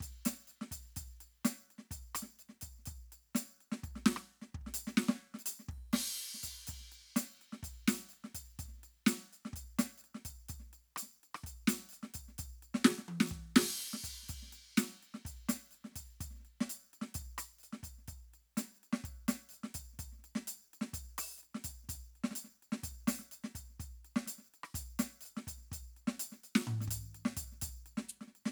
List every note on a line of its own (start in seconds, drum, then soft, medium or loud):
0.01 kick soft
0.01 percussion medium
0.26 snare medium
0.26 percussion loud
0.48 percussion soft
0.52 percussion soft
0.62 snare medium
0.72 kick soft
0.72 percussion medium
0.97 kick soft
0.97 percussion medium
1.03 kick soft
1.21 percussion medium
1.45 snare medium
1.45 percussion loud
1.71 percussion soft
1.79 snare soft
1.91 kick soft
1.91 percussion medium
1.99 kick soft
2.15 cross-stick medium
2.15 percussion loud
2.23 snare soft
2.40 percussion soft
2.50 snare soft
2.62 kick soft
2.62 percussion medium
2.79 snare soft
2.86 kick soft
2.86 percussion medium
3.13 percussion medium
3.36 snare medium
3.36 percussion loud
3.61 percussion soft
3.72 snare medium
3.84 kick soft
3.84 percussion soft
3.96 snare soft
4.07 snare loud
4.17 cross-stick medium
4.42 snare soft
4.55 kick soft
4.62 kick soft
4.67 snare soft
4.75 percussion loud
4.88 snare medium
4.98 snare medium
5.09 snare loud
5.35 snare soft
5.39 percussion medium
5.47 percussion loud
5.60 snare soft
5.69 kick soft
5.69 crash soft
5.78 kick soft
5.94 snare medium
5.94 crash loud
6.35 snare soft
6.44 kick soft
6.44 percussion medium
6.68 kick soft
6.68 percussion medium
6.81 snare soft
6.92 percussion soft
7.17 snare medium
7.17 percussion loud
7.42 percussion soft
7.53 snare soft
7.63 kick soft
7.63 percussion medium
7.88 snare medium
7.88 percussion loud
8.10 percussion soft
8.14 percussion soft
8.25 snare soft
8.35 kick soft
8.35 percussion medium
8.60 kick soft
8.60 percussion medium
8.66 kick soft
8.66 snare soft
8.74 snare soft
8.76 snare soft
8.78 snare soft
8.84 percussion soft
9.07 snare loud
9.07 percussion loud
9.33 percussion soft
9.46 snare soft
9.54 kick soft
9.54 percussion medium
9.79 snare medium
9.79 percussion loud
9.98 percussion soft
10.05 percussion soft
10.15 snare soft
10.26 kick soft
10.26 percussion medium
10.49 kick soft
10.49 percussion medium
10.60 snare soft
10.66 snare soft
10.74 percussion soft
10.97 cross-stick medium
10.97 percussion loud
11.03 snare soft
11.24 percussion soft
11.35 cross-stick medium
11.44 kick soft
11.44 percussion medium
11.68 snare medium
11.68 percussion loud
11.90 percussion medium
11.93 percussion soft
12.03 snare soft
12.14 kick soft
12.14 percussion medium
12.29 snare soft
12.39 kick soft
12.39 percussion medium
12.46 kick soft
12.63 percussion soft
12.75 snare medium
12.85 snare loud
12.99 snare soft
13.09 high tom medium
13.21 snare medium
13.28 kick soft
13.28 percussion medium
13.40 kick soft
13.56 snare loud
13.56 crash loud
13.81 percussion soft
13.94 snare soft
14.04 kick soft
14.04 percussion medium
14.23 snare soft
14.29 kick soft
14.29 percussion medium
14.43 snare soft
14.48 snare soft
14.52 snare soft
14.52 percussion medium
14.78 snare loud
14.78 percussion loud
15.03 percussion soft
15.15 snare soft
15.26 kick soft
15.26 percussion medium
15.33 kick soft
15.49 snare medium
15.49 percussion loud
15.72 percussion soft
15.75 percussion soft
15.85 snare soft
15.93 kick soft
15.93 snare soft
15.93 percussion medium
16.21 kick soft
16.21 percussion medium
16.28 kick soft
16.28 snare soft
16.35 snare soft
16.40 snare soft
16.46 percussion soft
16.61 snare medium
16.70 percussion medium
16.94 percussion soft
17.02 snare medium
17.15 kick soft
17.15 percussion medium
17.22 kick soft
17.39 cross-stick medium
17.39 percussion medium
17.59 percussion soft
17.64 percussion soft
17.73 snare soft
17.84 kick soft
17.84 percussion medium
17.99 snare soft
18.08 kick soft
18.08 percussion medium
18.34 percussion soft
18.58 snare medium
18.58 percussion medium
18.75 percussion soft
18.84 percussion soft
18.93 snare medium
19.04 kick soft
19.04 percussion medium
19.29 snare medium
19.29 percussion loud
19.50 percussion medium
19.54 percussion soft
19.64 snare medium
19.75 kick soft
19.75 percussion medium
19.94 snare soft
20.00 kick soft
20.00 percussion medium
20.08 kick soft
20.13 snare soft
20.19 snare soft
20.25 percussion soft
20.36 snare medium
20.48 percussion loud
20.74 percussion soft
20.82 snare medium
20.94 kick soft
20.94 percussion medium
21.19 cross-stick medium
21.19 percussion loud
21.38 percussion soft
21.44 percussion soft
21.55 snare medium
21.65 kick soft
21.65 percussion medium
21.84 snare soft
21.89 kick soft
21.89 percussion medium
21.96 kick soft
22.16 percussion soft
22.24 snare medium
22.32 snare soft
22.36 percussion loud
22.45 snare soft
22.63 percussion soft
22.73 snare medium
22.84 kick soft
22.84 percussion medium
22.92 kick soft
23.08 snare medium
23.08 percussion loud
23.20 snare soft
23.32 percussion medium
23.34 percussion soft
23.45 snare medium
23.55 kick soft
23.55 percussion medium
23.70 snare soft
23.80 kick soft
23.80 percussion medium
24.05 percussion soft
24.17 snare medium
24.27 snare soft
24.27 percussion loud
24.39 snare soft
24.45 percussion soft
24.54 percussion soft
24.64 cross-stick medium
24.75 kick soft
24.75 percussion medium
24.82 kick soft
25.00 snare medium
25.00 percussion loud
25.22 percussion medium
25.26 percussion soft
25.37 snare medium
25.48 kick soft
25.48 percussion medium
25.58 snare soft
25.62 snare soft
25.72 kick soft
25.72 percussion medium
25.78 kick soft
25.97 percussion soft
26.08 snare medium
26.19 snare soft
26.19 percussion loud
26.33 snare soft
26.44 percussion soft
26.56 snare loud
26.68 floor tom loud
26.81 snare soft
26.81 percussion medium
26.88 kick soft
26.88 percussion loud
27.15 percussion soft
27.26 snare medium
27.37 kick soft
27.37 percussion loud
27.44 kick soft
27.53 snare soft
27.62 kick soft
27.62 percussion loud
27.69 kick soft
27.87 percussion soft
27.98 snare medium
28.09 floor tom medium
28.22 snare soft
28.28 snare soft
28.36 percussion soft
28.46 snare medium